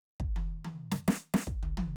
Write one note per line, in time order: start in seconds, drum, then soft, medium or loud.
0.20 kick medium
0.36 high tom medium
0.65 high tom loud
0.92 snare loud
1.08 snare loud
1.34 snare loud
1.47 kick medium
1.63 floor tom loud
1.77 high tom loud